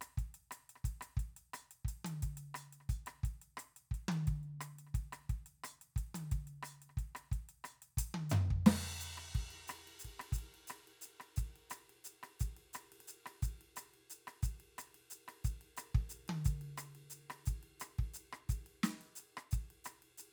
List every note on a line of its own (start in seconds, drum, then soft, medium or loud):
0.01 cross-stick medium
0.01 closed hi-hat medium
0.17 kick medium
0.17 closed hi-hat soft
0.34 closed hi-hat soft
0.51 cross-stick medium
0.51 closed hi-hat medium
0.69 closed hi-hat soft
0.76 cross-stick soft
0.84 kick medium
0.84 closed hi-hat medium
1.01 cross-stick medium
1.01 closed hi-hat soft
1.17 kick medium
1.17 closed hi-hat soft
1.36 closed hi-hat soft
1.53 closed hi-hat medium
1.53 cross-stick medium
1.71 closed hi-hat soft
1.85 kick soft
1.85 closed hi-hat medium
2.05 closed hi-hat medium
2.05 high tom medium
2.22 kick soft
2.22 closed hi-hat medium
2.37 closed hi-hat soft
2.54 closed hi-hat medium
2.54 cross-stick medium
2.73 closed hi-hat soft
2.80 cross-stick soft
2.89 closed hi-hat soft
2.89 kick medium
3.06 cross-stick medium
3.06 closed hi-hat soft
3.23 kick medium
3.23 closed hi-hat soft
3.42 closed hi-hat soft
3.57 cross-stick medium
3.57 closed hi-hat medium
3.76 closed hi-hat soft
3.91 kick soft
3.91 closed hi-hat soft
4.08 closed hi-hat soft
4.08 high tom loud
4.27 kick medium
4.27 closed hi-hat soft
4.43 closed hi-hat soft
4.61 cross-stick medium
4.61 closed hi-hat medium
4.78 closed hi-hat soft
4.87 cross-stick soft
4.94 kick medium
4.94 closed hi-hat soft
5.12 cross-stick medium
5.12 closed hi-hat soft
5.29 kick medium
5.29 closed hi-hat soft
5.46 closed hi-hat soft
5.64 closed hi-hat medium
5.64 cross-stick medium
5.81 closed hi-hat soft
5.96 kick medium
5.96 closed hi-hat soft
6.14 closed hi-hat medium
6.14 high tom medium
6.31 kick medium
6.31 closed hi-hat soft
6.47 closed hi-hat soft
6.63 closed hi-hat medium
6.63 cross-stick medium
6.82 closed hi-hat soft
6.89 cross-stick soft
6.97 kick soft
6.97 closed hi-hat soft
7.15 cross-stick medium
7.15 closed hi-hat soft
7.32 kick medium
7.32 closed hi-hat soft
7.49 closed hi-hat soft
7.64 closed hi-hat medium
7.64 cross-stick medium
7.82 closed hi-hat soft
7.97 kick medium
7.97 closed hi-hat loud
8.14 high tom loud
8.29 floor tom loud
8.29 hi-hat pedal medium
8.50 kick medium
8.66 snare loud
8.66 crash medium
9.00 hi-hat pedal medium
9.00 ride soft
9.17 cross-stick medium
9.17 ride soft
9.35 kick medium
9.35 ride soft
9.51 ride soft
9.68 cross-stick medium
9.68 hi-hat pedal medium
9.68 ride medium
9.87 ride soft
9.99 hi-hat pedal medium
10.05 kick soft
10.05 ride soft
10.19 cross-stick medium
10.19 ride soft
10.32 kick medium
10.32 hi-hat pedal medium
10.39 ride soft
10.54 ride soft
10.67 cross-stick medium
10.67 hi-hat pedal medium
10.67 ride soft
10.87 ride soft
11.01 hi-hat pedal medium
11.06 ride soft
11.20 cross-stick medium
11.20 ride soft
11.36 kick medium
11.36 hi-hat pedal medium
11.36 ride soft
11.56 ride soft
11.70 cross-stick medium
11.70 hi-hat pedal medium
11.70 ride soft
11.89 ride soft
12.04 hi-hat pedal medium
12.04 ride soft
12.23 cross-stick medium
12.23 ride soft
12.40 kick medium
12.40 hi-hat pedal medium
12.40 ride soft
12.57 ride soft
12.73 cross-stick medium
12.73 hi-hat pedal medium
12.73 ride soft
12.92 ride soft
13.00 ride soft
13.07 hi-hat pedal medium
13.07 ride soft
13.26 cross-stick medium
13.26 ride soft
13.42 kick medium
13.42 hi-hat pedal medium
13.42 ride soft
13.61 ride soft
13.76 cross-stick medium
13.76 hi-hat pedal medium
13.76 ride soft
13.94 ride soft
14.10 hi-hat pedal medium
14.10 ride soft
14.27 cross-stick medium
14.27 ride soft
14.43 kick medium
14.43 hi-hat pedal medium
14.43 ride soft
14.60 ride soft
14.78 cross-stick medium
14.78 hi-hat pedal medium
14.78 ride soft
14.94 ride soft
15.10 hi-hat pedal medium
15.10 ride soft
15.28 cross-stick medium
15.28 ride soft
15.44 kick medium
15.44 hi-hat pedal medium
15.44 ride soft
15.61 ride soft
15.77 cross-stick medium
15.77 hi-hat pedal medium
15.77 ride soft
15.94 kick medium
15.94 ride soft
16.09 hi-hat pedal medium
16.09 ride soft
16.28 high tom loud
16.28 ride soft
16.44 kick medium
16.44 hi-hat pedal medium
16.44 ride soft
16.61 ride soft
16.77 cross-stick medium
16.77 hi-hat pedal medium
16.77 ride soft
16.95 ride soft
17.10 hi-hat pedal medium
17.10 ride soft
17.30 cross-stick medium
17.30 ride soft
17.46 kick medium
17.46 hi-hat pedal medium
17.46 ride soft
17.63 ride soft
17.80 cross-stick medium
17.80 hi-hat pedal medium
17.80 ride soft
17.99 kick medium
17.99 ride soft
18.14 hi-hat pedal medium
18.14 ride soft
18.33 cross-stick medium
18.49 kick medium
18.49 hi-hat pedal medium
18.49 ride soft
18.66 ride soft
18.83 snare medium
18.83 hi-hat pedal medium
19.01 ride soft
19.15 hi-hat pedal medium
19.20 ride soft
19.37 cross-stick medium
19.51 kick medium
19.51 hi-hat pedal medium
19.51 ride soft
19.70 ride soft
19.84 cross-stick medium
19.84 hi-hat pedal medium
19.84 ride soft
20.02 ride soft
20.17 hi-hat pedal medium
20.17 ride soft